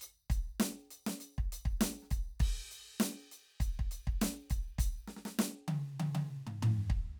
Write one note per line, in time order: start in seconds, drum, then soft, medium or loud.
0.01 hi-hat pedal medium
0.01 percussion medium
0.30 closed hi-hat medium
0.30 kick medium
0.47 kick soft
0.60 closed hi-hat medium
0.60 snare loud
0.91 closed hi-hat medium
1.06 snare loud
1.20 closed hi-hat medium
1.38 kick medium
1.52 closed hi-hat medium
1.65 kick medium
1.81 closed hi-hat loud
1.81 snare loud
2.02 snare soft
2.10 closed hi-hat medium
2.10 kick medium
2.40 kick medium
2.40 crash medium
2.71 closed hi-hat medium
3.00 closed hi-hat medium
3.00 snare loud
3.31 closed hi-hat medium
3.60 closed hi-hat medium
3.60 kick medium
3.79 kick medium
3.91 closed hi-hat medium
4.07 kick medium
4.21 closed hi-hat medium
4.21 snare loud
4.50 closed hi-hat medium
4.50 kick medium
4.78 closed hi-hat loud
4.78 kick medium
5.08 snare medium
5.16 snare medium
5.25 snare medium
5.39 snare loud
5.68 high tom loud
6.00 high tom loud
6.15 high tom loud
6.47 mid tom medium
6.62 mid tom loud
6.90 kick medium